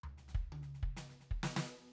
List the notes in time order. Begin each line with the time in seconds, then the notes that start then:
0.07 floor tom
0.18 snare
0.28 snare
0.35 kick
0.52 high tom
0.62 snare
0.74 snare
0.83 kick
0.97 snare
1.09 snare
1.21 snare
1.31 kick
1.43 snare
1.56 snare